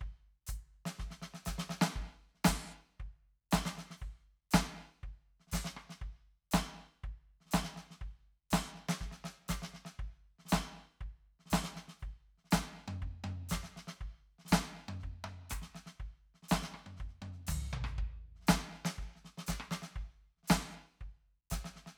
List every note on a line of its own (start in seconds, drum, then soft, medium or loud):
0.01 kick soft
0.47 kick soft
0.47 hi-hat pedal medium
0.86 snare medium
0.99 kick soft
0.99 snare soft
1.11 snare soft
1.22 snare soft
1.34 snare soft
1.46 kick soft
1.46 snare medium
1.46 hi-hat pedal medium
1.58 snare medium
1.70 snare medium
1.82 snare loud
1.96 kick medium
2.27 snare soft
2.35 snare soft
2.39 snare soft
2.44 kick medium
2.44 snare loud
2.44 hi-hat pedal loud
3.00 kick soft
3.51 kick soft
3.51 snare loud
3.51 hi-hat pedal loud
3.66 snare medium
3.78 snare soft
3.91 snare soft
3.97 hi-hat pedal soft
4.02 kick soft
4.51 kick medium
4.51 snare loud
4.51 hi-hat pedal medium
5.03 kick soft
5.40 snare soft
5.47 snare soft
5.52 kick medium
5.52 snare medium
5.52 hi-hat pedal medium
5.65 snare medium
5.77 cross-stick medium
5.90 snare soft
6.02 kick soft
6.51 kick soft
6.51 snare loud
6.51 hi-hat pedal loud
7.04 kick soft
7.41 snare soft
7.46 snare soft
7.51 kick soft
7.51 snare loud
7.51 hi-hat pedal medium
7.64 snare medium
7.77 snare soft
7.91 snare soft
8.01 kick soft
8.51 kick soft
8.51 snare loud
8.51 hi-hat pedal medium
8.75 snare soft
8.89 snare loud
9.01 kick soft
9.01 snare soft
9.12 snare soft
9.24 snare medium
9.48 kick soft
9.48 snare medium
9.48 hi-hat pedal medium
9.62 snare medium
9.74 snare soft
9.85 snare soft
9.99 kick soft
10.39 snare soft
10.45 snare soft
10.45 hi-hat pedal medium
10.53 kick soft
10.53 snare loud
11.01 kick soft
11.39 snare soft
11.46 snare soft
11.50 kick soft
11.50 snare loud
11.50 hi-hat pedal medium
11.64 snare medium
11.76 snare soft
11.88 snare soft
11.99 kick soft
11.99 hi-hat pedal soft
12.38 snare soft
12.44 snare soft
12.51 kick soft
12.51 snare loud
12.51 hi-hat pedal medium
12.88 high tom loud
13.02 kick soft
13.24 high tom loud
13.49 kick soft
13.49 snare medium
13.49 hi-hat pedal medium
13.63 snare soft
13.77 snare soft
13.88 snare medium
14.01 kick soft
14.39 snare soft
14.45 snare soft
14.45 hi-hat pedal medium
14.49 kick soft
14.49 snare soft
14.53 snare loud
14.60 snare soft
14.78 snare soft
14.89 high tom medium
14.99 snare soft
15.04 kick soft
15.24 high tom medium
15.50 kick soft
15.50 cross-stick medium
15.50 hi-hat pedal loud
15.62 snare soft
15.75 snare soft
15.86 snare soft
16.00 kick soft
16.34 snare soft
16.43 snare soft
16.49 kick soft
16.49 snare loud
16.49 hi-hat pedal medium
16.62 snare medium
16.74 cross-stick medium
16.86 high tom medium
16.96 kick soft
16.96 snare soft
17.08 snare soft
17.22 high tom medium
17.32 snare soft
17.47 kick soft
17.47 hi-hat pedal medium
17.47 mid tom loud
17.62 snare soft
17.73 floor tom loud
17.84 cross-stick medium
17.98 kick medium
18.35 snare soft
18.40 snare soft
18.43 snare soft
18.47 kick medium
18.47 snare loud
18.47 hi-hat pedal medium
18.74 snare soft
18.85 snare loud
18.98 kick soft
18.98 snare soft
19.16 snare soft
19.25 snare soft
19.38 snare medium
19.47 kick soft
19.47 snare medium
19.47 hi-hat pedal medium
19.60 cross-stick medium
19.71 snare medium
19.82 snare soft
19.96 kick soft
20.37 snare soft
20.43 snare soft
20.48 snare soft
20.48 hi-hat pedal medium
20.50 kick soft
20.50 snare loud
21.01 kick soft
21.50 kick medium
21.50 snare medium
21.50 hi-hat pedal medium
21.65 snare soft
21.76 snare soft
21.86 snare soft